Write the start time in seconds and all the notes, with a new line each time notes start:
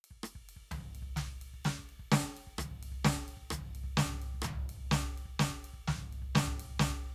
0.04 ride
0.11 kick
0.23 cross-stick, ride
0.35 kick
0.49 ride
0.56 kick
0.71 floor tom, ride
0.80 kick
0.95 ride
1.02 kick
1.16 snare, ride
1.27 kick
1.41 ride
1.54 kick
1.65 snare, ride
1.79 kick
1.89 ride
1.99 kick
2.12 snare, ride
2.23 kick
2.37 ride
2.47 kick
2.58 cross-stick, floor tom
2.71 kick
2.83 ride
2.92 kick
3.04 snare, ride
3.16 kick
3.28 ride
3.37 kick
3.50 cross-stick, floor tom
3.61 kick
3.75 ride
3.84 kick
3.97 snare, floor tom
4.09 kick
4.22 ride
4.35 kick
4.42 cross-stick, floor tom
4.56 kick
4.69 ride
4.76 kick
4.91 snare, ride
5.03 kick
5.18 ride
5.25 kick
5.39 snare, ride
5.50 kick
5.64 ride
5.73 kick
5.88 snare, floor tom
5.98 kick
6.13 ride
6.22 kick
6.35 snare, floor tom
6.47 kick
6.60 ride
6.66 kick
6.79 snare, ride
6.89 kick